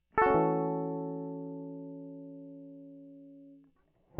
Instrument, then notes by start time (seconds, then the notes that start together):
electric guitar
0.18 A4
0.23 F#4
0.27 C#4
0.32 E3 A3